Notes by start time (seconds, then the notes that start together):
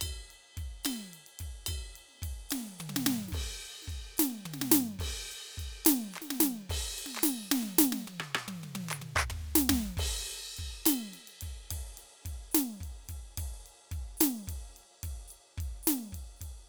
0.01 kick, ride bell
0.07 kick
0.27 hi-hat pedal, ride
0.57 kick, ride
0.84 snare, hi-hat pedal, ride bell
1.11 hi-hat pedal, ride
1.26 ride
1.39 kick, ride
1.66 kick, ride bell
1.74 kick
1.92 hi-hat pedal, ride
2.08 snare
2.14 snare
2.16 snare
2.22 kick, ride
2.28 kick
2.49 snare, hi-hat pedal, ride
2.60 snare
2.79 hi-hat pedal, mid tom
2.89 high tom
2.96 snare
3.28 kick, snare
3.34 crash
3.39 kick
3.82 snare
3.87 kick, ride
3.95 kick
4.17 snare, hi-hat pedal, ride
4.30 snare
4.45 mid tom
4.54 snare
4.61 snare
4.67 hi-hat pedal
4.72 snare
4.80 snare
4.99 kick, snare, crash
5.05 kick
5.27 hi-hat pedal, ride
5.52 snare
5.57 kick, ride
5.85 snare, hi-hat pedal, ride
5.96 snare
6.11 percussion, hi-hat pedal
6.22 snare
6.30 snare
6.40 snare, hi-hat pedal
6.69 kick, snare, crash
6.98 ride
7.06 snare
7.15 percussion
7.22 snare, hi-hat pedal
7.51 snare
7.63 snare
7.78 snare
7.92 snare
8.07 high tom
8.20 cross-stick
8.35 cross-stick
8.48 high tom
8.63 high tom
8.75 high tom
8.89 percussion, hi-hat pedal
9.02 mid tom
9.15 kick, percussion, hi-hat pedal
9.30 floor tom
9.43 kick
9.55 snare
9.69 kick, snare
9.97 kick, crash
10.57 kick, ride
10.86 snare, hi-hat pedal, ride bell
11.13 snare, hi-hat pedal, ride
11.27 ride
11.41 kick, ride
11.71 kick, ride
11.77 kick
11.97 ride
12.23 kick, snare, ride
12.27 snare
12.51 snare, hi-hat pedal, ride
12.80 kick, ride
12.99 snare
13.03 snare, hi-hat pedal
13.09 kick, ride
13.37 kick, ride
13.44 kick
13.66 ride
13.91 kick, ride
13.97 kick
14.17 snare, hi-hat pedal, ride
14.47 kick, ride
14.69 snare
14.74 snare, ride
15.03 kick, ride
15.28 hi-hat pedal, ride
15.58 kick, ride
15.64 kick
15.83 hi-hat pedal
15.87 snare, ride
15.98 snare
16.12 kick, ride
16.34 snare, hi-hat pedal
16.41 kick, ride